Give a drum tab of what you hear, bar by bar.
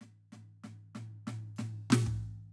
PC |----------x-----|
SD |o-o-o-o-o-o-o---|
FT |o-o-o-o-o-o-o---|
BD |-------------o--|